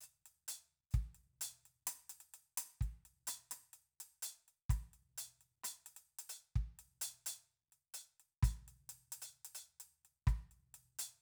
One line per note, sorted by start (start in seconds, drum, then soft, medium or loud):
0.01 closed hi-hat soft
0.01 hi-hat pedal medium
0.26 closed hi-hat soft
0.48 open hi-hat loud
0.91 kick medium
0.91 closed hi-hat soft
0.91 hi-hat pedal soft
1.15 closed hi-hat soft
1.41 closed hi-hat loud
1.66 closed hi-hat soft
1.87 cross-stick medium
1.87 closed hi-hat loud
2.10 closed hi-hat medium
2.21 closed hi-hat soft
2.34 closed hi-hat soft
2.58 cross-stick soft
2.58 closed hi-hat loud
2.81 kick soft
2.81 closed hi-hat soft
3.06 closed hi-hat soft
3.28 closed hi-hat loud
3.28 cross-stick soft
3.52 cross-stick soft
3.52 closed hi-hat medium
3.74 closed hi-hat soft
4.01 closed hi-hat medium
4.23 closed hi-hat loud
4.48 closed hi-hat soft
4.70 kick medium
4.70 cross-stick soft
4.70 closed hi-hat medium
4.94 closed hi-hat soft
5.18 closed hi-hat medium
5.41 closed hi-hat soft
5.64 closed hi-hat loud
5.64 cross-stick soft
5.87 closed hi-hat soft
5.97 closed hi-hat soft
6.19 closed hi-hat medium
6.30 closed hi-hat medium
6.56 kick medium
6.56 closed hi-hat soft
6.79 closed hi-hat soft
7.02 closed hi-hat loud
7.27 closed hi-hat loud
7.52 closed hi-hat soft
7.73 closed hi-hat soft
7.94 closed hi-hat medium
8.20 closed hi-hat soft
8.43 closed hi-hat medium
8.43 kick medium
8.43 cross-stick medium
8.68 closed hi-hat soft
8.90 closed hi-hat medium
9.12 closed hi-hat medium
9.22 closed hi-hat medium
9.45 closed hi-hat medium
9.55 closed hi-hat medium
9.80 closed hi-hat medium
10.05 closed hi-hat soft
10.27 kick medium
10.27 cross-stick medium
10.27 closed hi-hat soft
10.52 closed hi-hat soft
10.75 closed hi-hat soft
10.99 closed hi-hat loud